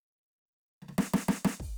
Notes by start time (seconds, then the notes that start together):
0.82 snare
0.89 snare, hi-hat pedal
0.99 snare
1.14 snare
1.29 snare
1.45 snare
1.60 open hi-hat, kick